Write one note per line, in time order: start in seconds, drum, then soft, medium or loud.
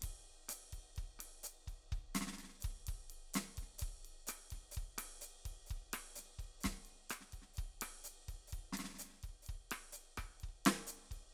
0.01 kick soft
0.01 snare soft
0.01 ride medium
0.09 kick soft
0.48 cross-stick soft
0.48 snare soft
0.48 hi-hat pedal medium
0.48 ride medium
0.73 kick soft
0.73 ride soft
0.78 kick soft
0.96 kick soft
0.96 ride soft
1.03 kick soft
1.19 cross-stick soft
1.19 ride medium
1.43 hi-hat pedal medium
1.67 kick soft
1.67 ride soft
1.72 kick soft
1.92 kick soft
1.92 ride soft
1.98 kick soft
2.15 snare medium
2.15 hi-hat pedal medium
2.15 ride medium
2.21 snare medium
2.27 snare soft
2.32 snare soft
2.38 snare soft
2.38 ride soft
2.43 snare soft
2.49 snare soft
2.54 snare soft
2.58 snare soft
2.58 hi-hat pedal soft
2.63 kick soft
2.63 snare soft
2.63 ride medium
2.69 kick soft
2.69 snare soft
2.75 snare soft
2.87 kick soft
2.87 ride medium
2.94 kick soft
3.10 ride soft
3.34 snare medium
3.34 hi-hat pedal medium
3.34 ride medium
3.57 kick soft
3.57 ride soft
3.62 kick soft
3.62 snare soft
3.68 snare soft
3.78 kick soft
3.78 hi-hat pedal medium
3.78 ride medium
3.88 kick soft
4.05 ride soft
4.27 cross-stick medium
4.27 hi-hat pedal medium
4.27 ride medium
4.51 kick soft
4.51 snare soft
4.51 ride soft
4.57 kick soft
4.57 snare soft
4.62 snare soft
4.71 hi-hat pedal medium
4.71 ride soft
4.77 kick soft
4.82 kick soft
4.98 cross-stick medium
4.98 ride medium
5.21 hi-hat pedal medium
5.21 ride soft
5.45 kick soft
5.45 ride soft
5.51 kick soft
5.66 hi-hat pedal soft
5.66 ride soft
5.70 kick soft
5.76 kick soft
5.93 cross-stick medium
5.93 ride medium
6.15 snare soft
6.15 hi-hat pedal medium
6.15 ride soft
6.24 snare soft
6.39 kick soft
6.39 ride soft
6.44 kick soft
6.60 snare medium
6.60 hi-hat pedal soft
6.60 ride medium
6.65 kick soft
6.71 kick soft
6.85 ride soft
7.10 cross-stick medium
7.10 hi-hat pedal medium
7.10 ride medium
7.21 snare soft
7.32 kick soft
7.32 ride soft
7.38 kick soft
7.38 snare soft
7.48 snare soft
7.54 hi-hat pedal soft
7.54 ride soft
7.58 kick soft
7.64 kick soft
7.81 cross-stick medium
7.81 ride medium
8.04 hi-hat pedal medium
8.04 ride soft
8.11 snare soft
8.28 kick soft
8.28 ride soft
8.34 kick soft
8.47 hi-hat pedal soft
8.53 kick soft
8.53 ride soft
8.58 kick soft
8.73 snare medium
8.77 snare soft
8.77 ride medium
8.84 snare soft
8.89 snare soft
8.94 snare soft
8.99 snare soft
8.99 hi-hat pedal medium
8.99 ride soft
9.09 snare soft
9.13 snare soft
9.16 snare soft
9.19 snare soft
9.21 kick soft
9.21 snare soft
9.21 ride soft
9.26 kick soft
9.26 snare soft
9.31 snare soft
9.42 hi-hat pedal soft
9.46 kick soft
9.46 ride soft
9.54 kick soft
9.71 cross-stick medium
9.71 ride medium
9.92 hi-hat pedal medium
9.92 ride soft
10.17 kick soft
10.17 cross-stick medium
10.17 ride soft
10.24 kick soft
10.24 snare soft
10.40 kick soft
10.40 ride soft
10.48 kick soft
10.65 snare loud
10.65 ride medium
10.74 cross-stick soft
10.87 hi-hat pedal medium
10.87 ride soft
11.04 snare soft
11.11 kick soft
11.11 ride soft
11.16 kick soft